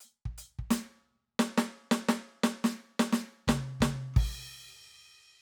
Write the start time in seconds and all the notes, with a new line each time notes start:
0.01 closed hi-hat
0.05 snare
0.26 kick
0.39 closed hi-hat
0.59 kick
0.71 closed hi-hat, snare
1.40 snare
1.58 snare
1.92 snare
2.09 snare
2.44 snare
2.65 snare
3.00 snare
3.13 snare
3.48 kick, snare, mid tom
3.81 kick, snare, mid tom
4.15 kick, cross-stick, crash